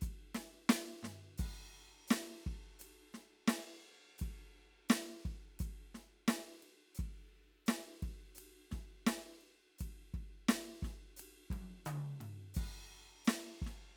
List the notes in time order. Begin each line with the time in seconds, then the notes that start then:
0.01 kick, hi-hat pedal, ride
0.35 snare, ride
0.69 snare, hi-hat pedal, ride
1.03 snare, floor tom
1.38 kick, hi-hat pedal, crash
2.08 snare, hi-hat pedal, ride
2.46 kick, ride
2.79 hi-hat pedal, ride
3.13 snare, ride
3.48 snare, hi-hat pedal, ride
4.18 kick, hi-hat pedal, ride
4.89 snare, hi-hat pedal, ride
5.25 kick, ride
5.59 kick, hi-hat pedal, ride
5.94 snare, ride
6.28 snare, hi-hat pedal, ride
6.62 ride
6.95 hi-hat pedal, crash
6.99 kick
7.66 snare, hi-hat pedal, ride
8.02 kick, ride
8.35 hi-hat pedal, ride
8.71 kick, snare, ride
9.07 snare, hi-hat pedal, ride
9.41 ride
9.78 kick, hi-hat pedal, ride
10.14 kick, ride
10.49 snare, hi-hat pedal, ride
10.82 kick, snare, ride
11.16 hi-hat pedal, ride
11.50 kick, high tom, ride
11.85 hi-hat pedal, mid tom, ride
12.20 floor tom, ride
12.54 kick, hi-hat pedal, crash
13.25 snare, hi-hat pedal, ride
13.62 kick, ride
13.66 snare